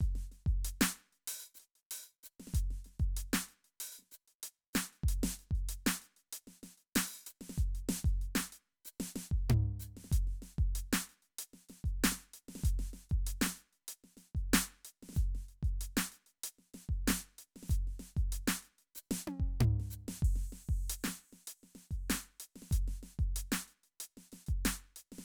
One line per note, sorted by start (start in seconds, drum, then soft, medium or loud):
0.01 kick medium
0.01 closed hi-hat soft
0.16 snare soft
0.32 snare soft
0.32 closed hi-hat soft
0.47 kick medium
0.47 closed hi-hat soft
0.65 closed hi-hat loud
0.81 snare loud
0.96 closed hi-hat soft
1.13 closed hi-hat soft
1.28 open hi-hat loud
1.55 hi-hat pedal medium
1.60 closed hi-hat soft
1.76 closed hi-hat soft
1.91 open hi-hat medium
2.23 hi-hat pedal medium
2.40 snare soft
2.47 snare soft
2.54 closed hi-hat medium
2.54 kick medium
2.71 snare soft
2.85 snare soft
2.85 closed hi-hat soft
3.00 kick medium
3.00 closed hi-hat soft
3.17 closed hi-hat medium
3.34 snare medium
3.49 closed hi-hat soft
3.65 closed hi-hat soft
3.81 open hi-hat medium
3.99 snare soft
4.03 snare soft
4.12 hi-hat pedal medium
4.28 closed hi-hat soft
4.43 open hi-hat loud
4.74 snare medium
4.74 closed hi-hat soft
4.74 hi-hat pedal medium
4.93 closed hi-hat soft
5.04 kick medium
5.09 closed hi-hat medium
5.24 snare medium
5.39 closed hi-hat soft
5.51 kick soft
5.55 closed hi-hat soft
5.69 closed hi-hat loud
5.87 snare medium
6.02 closed hi-hat soft
6.17 closed hi-hat soft
6.33 closed hi-hat loud
6.47 snare soft
6.63 snare soft
6.63 closed hi-hat soft
6.78 closed hi-hat soft
6.96 open hi-hat loud
6.96 snare medium
7.27 open hi-hat medium
7.27 hi-hat pedal medium
7.41 snare soft
7.50 snare soft
7.58 kick medium
7.58 closed hi-hat soft
7.75 closed hi-hat soft
7.89 snare medium
8.05 kick medium
8.05 closed hi-hat soft
8.22 closed hi-hat soft
8.36 snare medium
8.40 snare soft
8.53 closed hi-hat medium
8.85 hi-hat pedal medium
9.00 snare medium
9.16 snare soft
9.32 kick medium
9.50 floor tom loud
9.80 closed hi-hat soft
9.80 hi-hat pedal medium
9.97 snare soft
10.04 snare soft
10.12 closed hi-hat medium
10.12 kick medium
10.27 snare soft
10.42 snare soft
10.42 closed hi-hat soft
10.59 kick medium
10.59 closed hi-hat soft
10.76 closed hi-hat medium
10.93 snare medium
11.09 closed hi-hat soft
11.23 closed hi-hat soft
11.39 closed hi-hat loud
11.54 snare soft
11.69 snare soft
11.69 closed hi-hat soft
11.84 kick soft
11.84 closed hi-hat soft
12.04 open hi-hat loud
12.04 snare loud
12.12 snare soft
12.34 open hi-hat medium
12.49 snare soft
12.56 snare soft
12.60 snare soft
12.64 closed hi-hat medium
12.64 kick medium
12.79 snare soft
12.94 snare soft
12.94 closed hi-hat soft
13.10 kick medium
13.10 closed hi-hat soft
13.27 closed hi-hat loud
13.42 snare medium
13.47 snare soft
13.57 closed hi-hat soft
13.73 closed hi-hat soft
13.88 closed hi-hat loud
14.04 snare soft
14.17 snare soft
14.17 closed hi-hat soft
14.35 kick soft
14.35 closed hi-hat soft
14.54 open hi-hat medium
14.54 snare loud
14.85 open hi-hat medium
15.03 snare soft
15.09 snare soft
15.13 kick medium
15.13 snare soft
15.13 hi-hat pedal medium
15.17 closed hi-hat soft
15.35 snare soft
15.49 closed hi-hat soft
15.63 kick soft
15.63 closed hi-hat soft
15.81 closed hi-hat medium
15.97 snare medium
16.12 closed hi-hat soft
16.27 closed hi-hat soft
16.44 closed hi-hat loud
16.59 snare soft
16.74 snare soft
16.74 closed hi-hat soft
16.89 kick soft
16.89 closed hi-hat soft
17.08 open hi-hat loud
17.08 snare medium
17.10 snare medium
17.39 open hi-hat medium
17.56 snare soft
17.63 snare soft
17.68 closed hi-hat medium
17.68 kick medium
17.68 hi-hat pedal medium
17.87 snare soft
18.00 snare soft
18.00 closed hi-hat soft
18.17 kick medium
18.17 closed hi-hat soft
18.32 closed hi-hat medium
18.48 snare medium
18.63 closed hi-hat soft
18.79 closed hi-hat soft
18.95 hi-hat pedal loud
19.11 snare medium
19.28 high tom medium
19.40 kick soft
19.61 floor tom loud
19.80 snare soft
19.91 hi-hat pedal medium
20.08 snare soft
20.23 kick medium
20.23 crash medium
20.36 snare soft
20.53 snare soft
20.69 kick soft
20.90 closed hi-hat loud
21.04 snare medium
21.08 snare soft
21.33 snare soft
21.48 closed hi-hat medium
21.63 snare soft
21.75 snare soft
21.75 closed hi-hat soft
21.91 kick soft
21.91 closed hi-hat soft
22.10 open hi-hat loud
22.10 snare medium
22.15 snare soft
22.40 open hi-hat medium
22.56 snare soft
22.62 snare soft
22.70 closed hi-hat medium
22.70 kick medium
22.70 hi-hat pedal soft
22.88 snare soft
23.03 snare soft
23.03 closed hi-hat soft
23.19 kick medium
23.19 closed hi-hat soft
23.36 closed hi-hat loud
23.52 snare medium
23.68 closed hi-hat soft
23.84 closed hi-hat soft
24.01 closed hi-hat loud
24.17 snare soft
24.32 snare soft
24.32 closed hi-hat soft
24.47 closed hi-hat soft
24.47 kick soft
24.65 open hi-hat loud
24.65 snare medium
24.96 open hi-hat medium
25.12 snare soft
25.19 snare soft